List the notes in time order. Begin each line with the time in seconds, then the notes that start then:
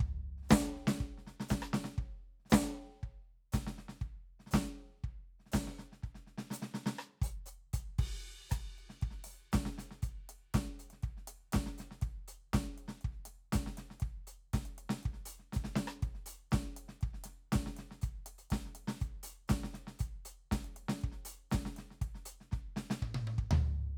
0.01 kick
0.38 snare
0.43 snare
0.46 snare
0.50 kick, snare, hi-hat pedal
0.76 snare
0.88 snare
1.01 kick, snare
1.18 snare
1.27 snare
1.41 snare
1.50 kick, snare, hi-hat pedal
1.63 cross-stick
1.74 snare
1.85 snare
1.99 kick
2.40 snare
2.46 snare
2.50 snare, hi-hat pedal
2.53 kick, snare
3.04 kick
3.53 kick, snare, hi-hat pedal
3.67 snare
3.79 snare
3.89 snare
4.01 kick, hi-hat pedal
4.40 snare
4.47 snare
4.52 kick, snare, hi-hat pedal
4.62 snare
5.05 kick
5.40 snare
5.47 snare
5.53 kick, snare, hi-hat pedal
5.68 snare
5.79 snare
5.93 snare
6.03 kick, snare
6.15 snare
6.27 snare
6.38 snare
6.51 snare, hi-hat pedal
6.63 snare
6.75 snare
6.87 snare
6.99 cross-stick
7.22 open hi-hat, kick
7.47 hi-hat pedal
7.74 open hi-hat, kick
7.99 kick, crash
8.50 kick, cross-stick, closed hi-hat, hi-hat pedal
8.79 closed hi-hat
8.90 snare
9.02 kick, closed hi-hat
9.11 snare
9.25 snare, open hi-hat
9.53 kick, snare, closed hi-hat, hi-hat pedal
9.66 snare
9.79 closed hi-hat, snare
9.92 snare
10.03 closed hi-hat, kick
10.30 closed hi-hat
10.55 kick, snare, closed hi-hat
10.80 closed hi-hat
10.91 snare, closed hi-hat
11.03 kick, closed hi-hat
11.18 snare
11.28 closed hi-hat
11.53 kick, snare, closed hi-hat
11.67 snare
11.79 closed hi-hat, snare
11.92 snare
12.02 kick, closed hi-hat
12.29 closed hi-hat
12.54 kick, snare, closed hi-hat
12.79 closed hi-hat
12.89 snare
13.02 kick, closed hi-hat
13.13 snare
13.26 snare, closed hi-hat
13.53 closed hi-hat, kick, snare
13.67 snare
13.78 snare, closed hi-hat
13.91 snare
14.01 kick, closed hi-hat
14.28 closed hi-hat
14.54 kick, snare, closed hi-hat
14.66 closed hi-hat
14.79 closed hi-hat
14.90 snare
15.04 kick, closed hi-hat
15.14 snare
15.26 open hi-hat
15.40 snare
15.53 kick, snare, hi-hat pedal
15.65 snare
15.76 snare
15.88 cross-stick
16.03 kick, closed hi-hat
16.15 snare
16.27 open hi-hat
16.52 kick, snare, closed hi-hat, hi-hat pedal
16.66 snare
16.77 closed hi-hat
16.89 snare
17.02 kick, closed hi-hat
17.14 snare
17.25 snare, closed hi-hat
17.53 kick, snare, closed hi-hat
17.67 snare
17.77 snare, closed hi-hat
17.92 snare
18.02 closed hi-hat, kick
18.14 snare
18.27 closed hi-hat
18.39 closed hi-hat
18.51 kick, snare, closed hi-hat
18.66 snare
18.76 closed hi-hat
18.88 snare
19.01 closed hi-hat, kick
19.24 open hi-hat
19.49 kick, snare, closed hi-hat, hi-hat pedal
19.64 snare
19.74 snare, closed hi-hat
19.88 snare
20.00 closed hi-hat, kick
20.26 closed hi-hat
20.52 kick, snare, closed hi-hat
20.65 closed hi-hat
20.77 closed hi-hat
20.89 snare
21.02 kick, closed hi-hat
21.12 snare
21.26 open hi-hat
21.51 kick, snare, closed hi-hat, hi-hat pedal
21.66 snare
21.77 snare, closed hi-hat
21.91 snare
22.02 kick, closed hi-hat
22.15 snare
22.26 closed hi-hat
22.41 snare
22.52 kick, snare
22.77 snare
22.91 snare
23.03 kick, high tom
23.15 high tom
23.28 high tom
23.39 kick
23.52 floor tom